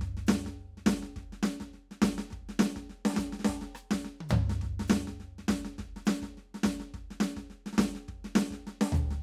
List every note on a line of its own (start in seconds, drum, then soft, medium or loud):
0.01 kick soft
0.01 snare soft
0.07 kick soft
0.17 snare soft
0.27 snare loud
0.27 hi-hat pedal medium
0.45 kick soft
0.45 snare soft
0.59 snare soft
0.77 snare soft
0.86 kick soft
0.86 snare loud
0.86 hi-hat pedal medium
0.95 kick soft
1.03 snare soft
1.16 kick soft
1.16 snare soft
1.22 kick soft
1.32 snare soft
1.43 snare loud
1.43 hi-hat pedal medium
1.60 kick soft
1.60 snare soft
1.73 snare soft
1.91 snare soft
2.02 kick soft
2.02 snare loud
2.02 hi-hat pedal medium
2.09 kick soft
2.11 kick soft
2.18 snare medium
2.30 kick soft
2.30 snare soft
2.39 kick soft
2.49 snare soft
2.59 snare loud
2.59 hi-hat pedal medium
2.76 kick soft
2.76 snare soft
2.89 snare soft
3.05 snare medium
3.10 cross-stick medium
3.10 snare medium
3.16 kick soft
3.16 snare medium
3.16 hi-hat pedal medium
3.24 kick soft
3.32 snare soft
3.39 snare soft
3.45 kick soft
3.45 snare loud
3.55 kick soft
3.61 snare soft
3.75 cross-stick medium
3.75 hi-hat pedal medium
3.91 kick soft
3.91 snare loud
4.05 snare soft
4.20 high tom medium
4.29 kick soft
4.29 hi-hat pedal medium
4.29 floor tom loud
4.49 snare medium
4.61 kick soft
4.61 snare soft
4.68 kick soft
4.79 snare medium
4.87 snare loud
4.87 hi-hat pedal medium
5.07 kick soft
5.07 snare soft
5.20 snare soft
5.38 snare soft
5.48 kick soft
5.48 snare loud
5.48 hi-hat pedal medium
5.56 kick soft
5.58 kick soft
5.65 snare soft
5.78 kick soft
5.78 snare soft
5.85 kick soft
5.96 snare soft
6.05 snare loud
6.05 hi-hat pedal soft
6.22 kick soft
6.22 snare soft
6.37 snare soft
6.54 snare soft
6.63 kick soft
6.63 snare loud
6.63 hi-hat pedal medium
6.71 kick soft
6.80 snare soft
6.94 kick soft
6.94 snare soft
7.01 kick soft
7.10 snare soft
7.20 snare loud
7.20 hi-hat pedal medium
7.36 kick soft
7.36 snare soft
7.50 snare soft
7.66 snare medium
7.73 snare soft
7.78 kick soft
7.78 snare loud
7.78 hi-hat pedal medium
7.95 snare soft
8.08 kick soft
8.08 snare soft
8.15 kick soft
8.24 snare soft
8.35 snare loud
8.35 hi-hat pedal medium
8.50 kick soft
8.50 snare soft
8.67 snare soft
8.81 snare loud
8.92 kick soft
8.92 floor tom loud
8.92 hi-hat pedal medium
9.01 kick soft
9.04 kick soft
9.11 snare soft